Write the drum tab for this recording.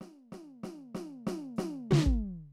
HH |----------p-----|
SD |g-g-g-o-o-o-o---|
FT |g-g-o-o-o-o-o---|
BD |-------------o--|